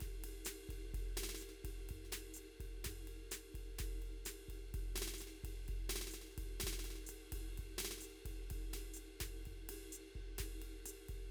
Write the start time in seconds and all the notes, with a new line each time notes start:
0.01 kick, snare, ride
0.08 kick
0.14 snare
0.23 snare, ride
0.45 snare, hi-hat pedal, ride
0.69 kick, ride
0.75 kick
0.94 kick, ride
1.00 kick
1.17 snare, ride
1.24 snare
1.30 snare
1.35 snare, hi-hat pedal
1.42 snare, ride
1.49 snare
1.65 kick, ride
1.70 kick
1.89 kick, ride
1.96 kick
2.05 snare
2.12 snare, ride
2.34 hi-hat pedal, ride
2.61 kick, ride
2.66 kick
2.85 kick, snare, ride
2.92 kick
3.08 ride
3.32 snare, hi-hat pedal, ride
3.55 kick, ride
3.60 kick
3.79 kick, snare, ride
3.86 kick
4.03 ride
4.26 snare, hi-hat pedal, ride
4.49 kick, ride
4.75 kick, ride
4.80 kick
4.96 snare, ride
5.02 snare
5.08 snare
5.14 snare
5.19 snare, hi-hat pedal, ride
5.28 snare
5.35 snare
5.41 kick, snare, ride
5.46 kick, snare
5.50 snare
5.53 snare
5.56 snare
5.65 hi-hat pedal, ride
5.69 kick
5.74 kick
5.90 snare, ride
5.96 snare
6.02 snare
6.07 snare
6.12 snare, hi-hat pedal, ride
6.22 snare
6.27 snare
6.32 snare
6.36 kick, snare, ride
6.44 kick
6.60 kick, snare, ride
6.67 kick, snare
6.73 snare
6.80 snare
6.85 snare, ride
6.91 snare
6.96 snare
7.01 snare
7.04 snare, hi-hat pedal
7.08 snare, ride
7.33 kick, ride
7.38 kick, snare
7.58 kick, ride
7.64 kick
7.79 snare, ride
7.85 snare
7.91 snare
7.98 snare, hi-hat pedal
8.02 snare, ride
8.10 snare
8.16 snare
8.20 snare
8.26 kick, ride
8.31 kick
8.51 kick, ride
8.57 kick
8.74 snare, ride
8.94 hi-hat pedal, ride
9.20 kick, snare, ride
9.27 kick
9.46 kick, ride
9.53 kick
9.69 snare, ride
9.93 hi-hat pedal
10.16 kick
10.21 kick
10.39 kick, snare, hi-hat pedal, ride
10.46 kick
10.62 ride
10.86 snare, hi-hat pedal, ride
11.09 kick, ride
11.15 kick